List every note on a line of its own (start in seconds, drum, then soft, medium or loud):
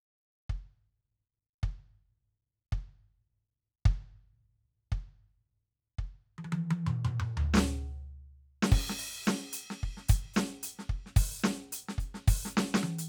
0.49 kick medium
1.63 kick medium
2.72 kick medium
3.85 kick loud
4.92 kick medium
5.98 kick medium
6.38 high tom medium
6.44 high tom medium
6.52 high tom loud
6.71 high tom loud
6.86 mid tom loud
7.05 mid tom loud
7.20 mid tom loud
7.37 floor tom loud
7.54 kick soft
7.54 snare loud
7.57 snare loud
8.62 snare loud
8.72 kick loud
8.72 crash loud
8.89 snare medium
8.98 open hi-hat loud
9.24 snare loud
9.24 hi-hat pedal medium
9.53 closed hi-hat loud
9.70 snare medium
9.83 kick medium
9.97 snare soft
10.09 closed hi-hat loud
10.09 kick loud
10.34 snare loud
10.34 hi-hat pedal medium
10.63 closed hi-hat loud
10.79 snare medium
10.89 kick medium
11.06 snare soft
11.16 open hi-hat loud
11.16 kick loud
11.39 hi-hat pedal medium
11.44 snare loud
11.72 closed hi-hat loud
11.89 snare medium
11.98 closed hi-hat soft
11.98 kick medium
12.14 snare medium
12.27 open hi-hat loud
12.27 kick loud
12.45 snare medium
12.49 hi-hat pedal medium
12.57 snare loud
12.74 snare loud
12.83 high tom loud
12.99 closed hi-hat loud